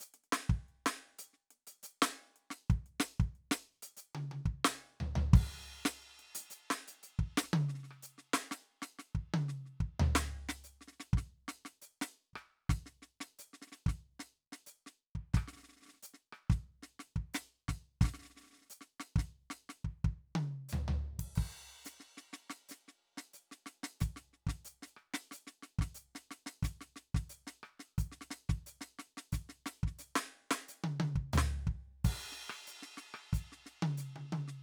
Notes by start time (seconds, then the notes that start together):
0.01 hi-hat pedal
0.15 closed hi-hat
0.25 closed hi-hat
0.33 snare
0.40 snare
0.50 kick
0.69 closed hi-hat
0.87 snare
1.19 closed hi-hat
1.34 snare
1.51 closed hi-hat
1.68 closed hi-hat
1.84 hi-hat pedal
2.03 snare
2.10 snare
2.37 closed hi-hat
2.51 snare
2.71 kick, closed hi-hat
2.87 closed hi-hat
3.01 snare
3.20 kick, closed hi-hat
3.36 closed hi-hat
3.52 snare
3.83 closed hi-hat
3.98 hi-hat pedal
4.16 high tom
4.32 high tom
4.46 kick
4.65 snare
5.01 floor tom
5.16 floor tom
5.34 kick, crash
5.70 closed hi-hat
5.86 snare
6.03 closed hi-hat
6.20 closed hi-hat
6.36 closed hi-hat
6.51 hi-hat pedal
6.71 snare
6.88 closed hi-hat
7.04 closed hi-hat
7.20 kick
7.38 snare
7.44 snare
7.54 high tom
7.69 snare
7.75 snare
7.79 snare
7.84 snare
7.92 cross-stick
8.03 hi-hat pedal
8.19 snare
8.34 snare
8.52 snare
8.83 snare
9.00 snare
9.16 kick
9.35 high tom
9.49 snare
9.66 snare
9.81 kick
10.00 floor tom
10.16 snare
10.50 snare
10.65 hi-hat pedal
10.82 snare
10.88 snare
10.93 snare
11.01 snare
11.14 kick
11.18 snare
11.49 snare
11.66 snare
11.83 hi-hat pedal
12.02 snare
12.34 kick, cross-stick
12.70 kick, snare
12.87 snare
13.03 snare
13.21 snare
13.40 hi-hat pedal
13.54 snare
13.63 snare
13.68 snare
13.73 snare
13.87 kick, snare
14.20 snare
14.53 snare
14.67 hi-hat pedal
14.87 snare
15.16 kick
15.34 kick, cross-stick, snare
15.48 snare
15.53 snare
15.57 snare
15.60 snare
15.64 snare
15.69 snare
15.73 snare
15.77 snare
15.81 snare
15.83 snare
15.86 snare
15.89 snare
15.94 snare
15.97 snare
16.03 hi-hat pedal
16.14 snare
16.33 cross-stick
16.51 kick, snare
16.83 snare
17.00 snare
17.17 kick
17.35 snare, hi-hat pedal
17.69 kick, snare
18.02 kick, snare
18.05 snare
18.08 snare
18.15 snare
18.19 snare
18.23 snare
18.25 snare
18.31 snare
18.36 snare
18.37 snare
18.41 snare
18.44 snare
18.47 snare
18.54 snare
18.56 snare
18.59 snare
18.62 snare
18.66 snare
18.71 hi-hat pedal
18.82 snare
19.01 snare
19.17 kick, snare
19.51 snare
19.70 snare
19.85 kick
20.05 kick
20.36 high tom
20.70 floor tom, hi-hat pedal
20.89 floor tom
21.20 kick, ride
21.36 kick, crash
21.86 snare, hi-hat pedal
22.01 snare
22.18 snare
22.34 snare
22.51 snare
22.70 snare, hi-hat pedal
22.89 snare
23.18 snare
23.34 hi-hat pedal
23.52 snare
23.67 snare
23.84 snare
24.01 kick, snare, hi-hat pedal
24.17 snare
24.34 snare
24.48 kick, snare
24.66 hi-hat pedal
24.83 snare, hi-hat pedal
24.97 cross-stick
25.15 snare
25.32 snare, hi-hat pedal
25.48 snare
25.63 snare
25.79 kick, snare
25.95 hi-hat pedal
26.16 snare, hi-hat pedal
26.32 snare
26.47 snare
26.63 kick, snare, hi-hat pedal
26.82 snare
26.97 snare
27.15 kick, snare
27.30 hi-hat pedal
27.48 snare
27.64 cross-stick
27.80 snare
27.99 kick, hi-hat pedal
28.13 snare
28.22 snare
28.31 snare
28.50 kick, snare
28.67 hi-hat pedal
28.82 snare
29.00 snare
29.18 snare
29.33 kick, snare, hi-hat pedal
29.50 snare
29.67 snare
29.84 kick, snare
29.99 snare, hi-hat pedal
30.16 snare, hi-hat pedal
30.52 snare
30.69 hi-hat pedal
30.85 high tom
31.01 high tom
31.16 kick
31.34 floor tom, hi-hat pedal
31.38 snare
31.68 kick
32.05 kick, hi-hat pedal, crash
32.33 snare
32.50 cross-stick
32.68 hi-hat pedal
32.83 snare
32.98 snare
33.15 cross-stick
33.34 kick, hi-hat pedal
33.53 snare
33.67 snare
33.83 high tom
33.98 snare, hi-hat pedal
34.17 high tom
34.33 high tom
34.49 snare